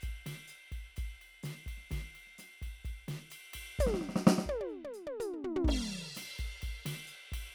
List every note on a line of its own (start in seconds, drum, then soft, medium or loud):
0.01 kick soft
0.01 hi-hat pedal medium
0.01 ride soft
0.09 kick soft
0.26 snare soft
0.26 ride medium
0.48 hi-hat pedal medium
0.48 ride soft
0.72 kick soft
0.72 ride soft
0.96 kick soft
0.96 hi-hat pedal soft
0.96 ride soft
1.21 ride soft
1.43 snare soft
1.43 hi-hat pedal medium
1.43 ride medium
1.67 kick soft
1.67 ride soft
1.78 snare soft
1.90 kick soft
1.90 snare soft
1.90 hi-hat pedal soft
1.90 ride medium
2.15 ride soft
2.27 snare soft
2.38 snare soft
2.38 hi-hat pedal medium
2.38 ride soft
2.62 kick soft
2.62 ride soft
2.67 kick soft
2.84 kick soft
2.84 hi-hat pedal soft
2.84 ride soft
2.90 kick soft
3.08 snare soft
3.08 ride medium
3.31 hi-hat pedal medium
3.31 ride medium
3.54 kick soft
3.54 ride medium
3.79 kick soft
3.79 hi-hat pedal loud
3.79 high tom loud
3.85 kick soft
3.85 snare soft
3.94 snare soft
4.01 snare soft
4.09 snare soft
4.16 snare medium
4.27 snare loud
4.39 snare medium
4.46 kick soft
4.46 high tom loud
4.61 high tom medium
4.69 hi-hat pedal soft
4.85 high tom medium
4.94 hi-hat pedal medium
5.07 high tom medium
5.20 hi-hat pedal medium
5.20 mid tom medium
5.33 mid tom soft
5.44 floor tom medium
5.56 floor tom loud
5.64 kick soft
5.64 floor tom soft
5.64 crash loud
6.15 snare soft
6.15 hi-hat pedal medium
6.15 ride medium
6.39 kick soft
6.39 ride soft
6.44 kick soft
6.61 kick soft
6.61 hi-hat pedal soft
6.61 ride medium
6.69 kick soft
6.86 snare soft
6.86 ride medium
7.07 hi-hat pedal medium
7.32 kick soft
7.32 ride medium